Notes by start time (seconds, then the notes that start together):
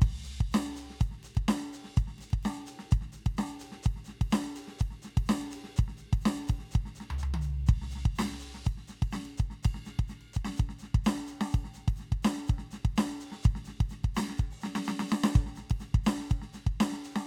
0.01 kick, hi-hat pedal, crash, ride
0.24 hi-hat pedal
0.40 kick
0.52 snare, hi-hat pedal
0.57 ride
0.76 hi-hat pedal
0.81 ride
0.90 snare
1.00 kick, hi-hat pedal, ride
1.11 snare
1.23 hi-hat pedal, ride
1.35 kick, ride
1.48 snare, hi-hat pedal
1.59 ride
1.72 hi-hat pedal, ride
1.84 snare
1.97 kick, hi-hat pedal, ride
2.07 snare
2.18 snare, hi-hat pedal, ride
2.30 kick, ride
2.43 snare, hi-hat pedal, ride
2.58 snare
2.66 hi-hat pedal, ride
2.79 snare
2.91 kick, hi-hat pedal, ride
3.01 snare
3.12 hi-hat pedal, ride
3.26 kick, ride
3.37 snare, hi-hat pedal
3.50 ride
3.59 hi-hat pedal, ride
3.72 snare
3.83 kick, hi-hat pedal, ride
3.96 snare
4.04 snare, hi-hat pedal
4.21 kick, ride
4.30 snare, hi-hat pedal
4.44 ride
4.55 hi-hat pedal, ride
4.68 snare
4.79 kick, hi-hat pedal, ride
4.91 snare
5.02 snare, hi-hat pedal
5.17 kick, ride
5.26 snare, hi-hat pedal
5.41 ride
5.51 hi-hat pedal, ride
5.64 snare
5.76 kick, hi-hat pedal, ride
5.88 snare
5.97 hi-hat pedal
6.13 kick, ride
6.21 hi-hat pedal
6.25 snare
6.37 ride
6.47 kick, hi-hat pedal, ride
6.59 snare
6.71 hi-hat pedal, ride
6.75 kick
6.85 snare
6.95 hi-hat pedal
7.00 snare
7.10 floor tom
7.18 hi-hat pedal
7.23 floor tom
7.34 high tom
7.41 hi-hat pedal, ride
7.66 kick, hi-hat pedal, ride
7.82 snare
7.90 hi-hat pedal
7.95 snare
8.05 kick
8.15 snare, hi-hat pedal, crash
8.34 snare
8.39 hi-hat pedal, ride
8.54 snare
8.65 kick, hi-hat pedal, ride
8.78 snare
8.87 snare, hi-hat pedal
9.02 kick, ride bell
9.11 snare, hi-hat pedal
9.25 ride bell
9.38 kick, hi-hat pedal, ride bell
9.50 snare
9.63 kick, hi-hat pedal, ride bell
9.74 snare
9.85 snare, hi-hat pedal
9.99 kick, ride bell
10.08 snare, hi-hat pedal
10.21 ride bell
10.33 kick, hi-hat pedal, ride bell
10.45 snare
10.56 kick, hi-hat pedal, ride bell
10.69 snare
10.79 hi-hat pedal
10.83 snare, ride bell
10.95 kick, ride bell
11.04 snare, hi-hat pedal
11.18 ride bell
11.27 hi-hat pedal
11.31 ride bell
11.41 snare
11.51 kick, hi-hat pedal, ride bell
11.64 snare
11.74 snare, hi-hat pedal, ride
11.88 kick, ride
11.96 snare, hi-hat pedal
12.12 kick, ride
12.22 snare, hi-hat pedal, ride
12.37 snare
12.47 kick, hi-hat pedal, ride
12.58 snare
12.71 snare, hi-hat pedal, ride
12.85 kick, ride
12.96 snare, hi-hat pedal
13.09 ride
13.20 hi-hat pedal, ride
13.32 snare
13.43 kick, hi-hat pedal, ride
13.55 snare
13.64 snare, hi-hat pedal, ride
13.80 kick, ride
13.89 snare, hi-hat pedal
14.04 kick, ride
14.14 snare, hi-hat pedal, ride
14.30 snare
14.37 kick, hi-hat pedal, ride
14.51 open hi-hat
14.60 snare, hi-hat pedal
14.75 snare
14.84 snare, hi-hat pedal
14.99 snare
15.08 snare, hi-hat pedal
15.24 snare
15.33 kick, hi-hat pedal, ride
15.46 snare
15.55 snare, hi-hat pedal
15.70 kick, ride
15.79 snare, hi-hat pedal
15.94 kick
16.04 snare, hi-hat pedal, crash
16.20 snare
16.30 kick, hi-hat pedal
16.42 snare
16.53 snare, hi-hat pedal, ride
16.66 kick, ride
16.80 snare, hi-hat pedal, ride
16.92 snare
17.04 hi-hat pedal, ride
17.16 snare